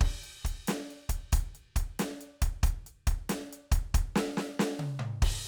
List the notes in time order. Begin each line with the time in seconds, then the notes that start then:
0.01 kick, crash
0.24 closed hi-hat
0.45 kick, closed hi-hat
0.68 snare, closed hi-hat
0.91 closed hi-hat
1.09 kick, closed hi-hat
1.32 closed hi-hat, kick
1.55 closed hi-hat
1.76 kick, closed hi-hat
1.99 snare, closed hi-hat
2.21 closed hi-hat
2.42 kick, closed hi-hat
2.63 kick, hi-hat pedal, open hi-hat
2.87 closed hi-hat
3.07 kick, closed hi-hat
3.29 snare, closed hi-hat
3.53 closed hi-hat
3.72 kick, closed hi-hat
3.94 kick, closed hi-hat
4.16 snare
4.37 snare
4.60 snare
4.79 high tom
4.99 mid tom
5.22 kick, crash